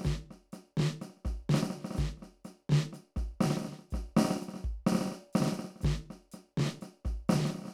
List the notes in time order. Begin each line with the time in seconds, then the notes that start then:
0.01 snare, hi-hat pedal
0.05 kick, snare
0.19 snare
0.31 snare
0.52 snare, hi-hat pedal
0.77 snare
0.80 snare
1.02 snare, hi-hat pedal
1.09 snare
1.17 snare
1.25 kick, snare
1.49 snare, hi-hat pedal
1.54 snare
1.56 snare
1.63 snare
1.70 snare
1.76 snare
1.81 snare
1.84 snare
1.91 snare
1.95 kick, snare, hi-hat pedal
1.98 snare
2.17 snare
2.21 snare
2.45 snare, hi-hat pedal
2.69 snare
2.72 snare
2.93 snare, hi-hat pedal
3.00 snare
3.16 kick, snare
3.41 snare, hi-hat pedal
3.44 snare
3.45 snare
3.50 snare
3.57 snare
3.61 snare
3.65 snare
3.67 snare
3.72 snare
3.79 snare
3.91 kick, snare, hi-hat pedal
4.17 snare
4.18 snare
4.21 snare
4.25 snare
4.28 snare
4.31 snare
4.36 snare
4.41 snare, hi-hat pedal
4.48 snare
4.54 snare
4.56 snare
4.60 kick, snare
4.64 snare
4.87 snare, hi-hat pedal
4.92 snare
4.95 snare
4.99 snare
5.01 snare
5.06 snare
5.08 snare
5.12 snare
5.33 snare, hi-hat pedal
5.40 snare
5.42 snare
5.46 snare
5.48 snare
5.52 snare
5.59 snare
5.65 snare
5.70 snare
5.76 snare
5.81 kick, snare, hi-hat pedal
5.85 snare
5.89 kick
5.91 kick, snare
5.99 snare
6.10 snare
6.32 snare, hi-hat pedal
6.57 snare
6.60 snare
6.66 snare
6.81 snare, hi-hat pedal
6.82 snare
7.05 kick, snare
7.11 kick
7.29 snare, hi-hat pedal
7.33 snare
7.40 snare
7.45 snare
7.50 snare
7.55 snare
7.59 snare
7.62 snare
7.64 snare
7.65 snare
7.68 snare